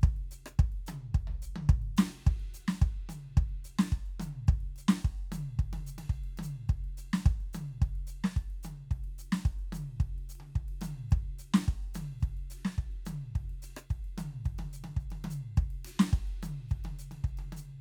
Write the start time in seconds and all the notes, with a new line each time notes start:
0.01 kick, hi-hat pedal, ride
0.17 ride
0.31 hi-hat pedal, ride bell
0.46 cross-stick
0.59 kick, ride
0.72 ride
0.80 kick
0.87 hi-hat pedal, high tom, ride bell
1.15 kick, ride
1.27 floor tom, ride
1.42 hi-hat pedal, ride
1.56 high tom
1.69 kick, ride
1.82 ride
1.97 snare, hi-hat pedal, ride
2.27 kick, ride
2.40 ride
2.54 hi-hat pedal, ride bell
2.68 snare
2.82 kick, ride
3.09 hi-hat pedal, high tom, ride bell
3.37 kick, ride
3.49 ride
3.64 hi-hat pedal, ride bell
3.79 snare
3.92 kick
4.06 ride
4.20 hi-hat pedal, high tom, ride bell
4.48 kick, ride
4.61 ride
4.76 hi-hat pedal, ride bell
4.88 snare
5.05 kick, hi-hat pedal
5.32 hi-hat pedal, high tom, ride bell
5.59 kick, ride
5.73 high tom, ride bell
5.87 hi-hat pedal
5.98 high tom, ride bell
6.09 kick, hi-hat pedal
6.24 ride
6.38 high tom, ride bell
6.43 hi-hat pedal
6.69 kick, ride
6.84 ride
6.97 hi-hat pedal, ride bell
7.13 snare
7.26 kick, ride
7.41 ride
7.53 hi-hat pedal, high tom, ride bell
7.82 kick, ride
7.96 ride
8.07 hi-hat pedal, ride bell
8.24 snare
8.36 kick, ride
8.50 ride
8.63 hi-hat pedal, high tom, ride bell
8.91 kick, ride
9.04 ride
9.18 hi-hat pedal, ride
9.32 snare
9.45 kick, ride
9.59 ride
9.73 hi-hat pedal, high tom, ride
10.00 kick, ride
10.18 ride
10.29 hi-hat pedal
10.35 ride
10.40 high tom
10.55 kick, hi-hat pedal
10.68 ride
10.81 hi-hat pedal, high tom, ride bell
11.09 kick, hi-hat pedal, ride
11.39 hi-hat pedal, ride
11.54 snare
11.65 kick, hi-hat pedal
11.93 kick, hi-hat pedal, high tom, ride bell
12.20 kick, hi-hat pedal, ride
12.37 ride
12.50 hi-hat pedal, ride
12.65 snare
12.77 kick, hi-hat pedal
12.92 ride
13.06 hi-hat pedal, high tom, ride bell
13.35 kick, ride
13.50 ride
13.62 hi-hat pedal, ride bell
13.77 cross-stick
13.90 kick, hi-hat pedal, ride
14.05 ride
14.18 hi-hat pedal, high tom, ride bell
14.45 kick, hi-hat pedal, ride
14.59 high tom, ride bell
14.73 hi-hat pedal
14.84 high tom, ride bell
14.97 kick, hi-hat pedal
15.11 high tom, ride bell
15.24 high tom, ride bell
15.30 hi-hat pedal
15.56 kick, hi-hat pedal, ride
15.71 ride
15.85 hi-hat pedal, ride
15.99 snare
16.13 kick, ride
16.28 ride
16.43 hi-hat pedal, high tom, ride
16.69 kick, hi-hat pedal, ride
16.84 high tom, ride bell
16.99 hi-hat pedal
17.11 high tom, ride bell
17.24 kick, hi-hat pedal
17.38 high tom, ride bell
17.52 high tom, ride bell
17.57 hi-hat pedal